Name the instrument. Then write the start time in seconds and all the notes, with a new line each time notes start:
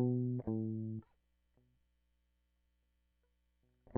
electric guitar
0.00 B2
0.49 A2